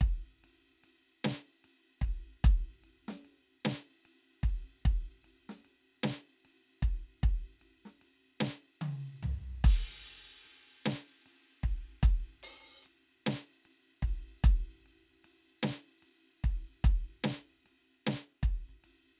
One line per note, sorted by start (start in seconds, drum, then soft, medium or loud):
0.01 kick loud
0.01 ride soft
0.44 ride medium
0.84 ride soft
1.25 snare loud
1.25 ride medium
1.64 ride soft
2.02 kick medium
2.02 ride soft
2.44 kick loud
2.44 ride medium
2.84 ride soft
3.08 snare medium
3.25 ride soft
3.65 snare loud
3.65 ride medium
3.81 snare soft
4.05 ride soft
4.43 kick medium
4.43 ride medium
4.85 kick loud
4.85 ride medium
5.25 ride soft
5.49 snare medium
5.65 ride soft
6.04 snare loud
6.04 ride medium
6.20 snare soft
6.45 ride soft
6.83 kick medium
6.83 ride soft
7.23 kick loud
7.23 ride medium
7.54 snare soft
7.62 ride soft
7.85 snare soft
8.02 ride soft
8.40 snare loud
8.40 ride medium
8.81 high tom loud
8.81 ride medium
9.23 floor tom medium
9.64 kick loud
9.64 crash medium
10.07 ride soft
10.45 ride soft
10.86 snare loud
10.86 ride medium
11.26 ride medium
11.63 kick medium
11.63 ride soft
12.03 kick loud
12.03 ride medium
12.43 ride medium
12.43 percussion loud
12.83 hi-hat pedal soft
12.83 ride soft
13.27 snare loud
13.27 ride medium
13.65 ride soft
14.03 kick medium
14.03 ride medium
14.44 kick loud
14.44 ride medium
14.86 ride soft
15.25 ride medium
15.63 snare loud
15.63 ride medium
15.77 snare soft
16.02 ride soft
16.44 kick medium
16.44 ride soft
16.84 kick loud
16.84 ride soft
17.24 snare loud
17.24 ride soft
17.64 snare soft
17.64 ride soft
18.07 snare loud
18.43 kick medium
18.43 ride soft
18.69 kick soft
18.84 ride medium